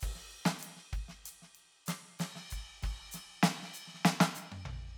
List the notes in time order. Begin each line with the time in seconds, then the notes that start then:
0.01 kick, hi-hat pedal, crash
0.15 snare
0.19 snare
0.31 ride
0.46 snare
0.59 hi-hat pedal
0.63 ride
0.77 snare
0.93 kick, ride
1.09 snare
1.26 hi-hat pedal, ride
1.42 snare
1.55 ride
1.86 snare, hi-hat pedal, ride
2.20 snare, ride
2.36 snare
2.51 kick, hi-hat pedal, ride
2.83 kick, snare, ride
3.12 snare, hi-hat pedal, ride
3.43 snare, ride
3.63 snare
3.74 hi-hat pedal, ride
3.88 snare
3.95 snare
4.01 snare
4.05 snare
4.21 snare
4.35 cross-stick, hi-hat pedal
4.52 high tom
4.66 floor tom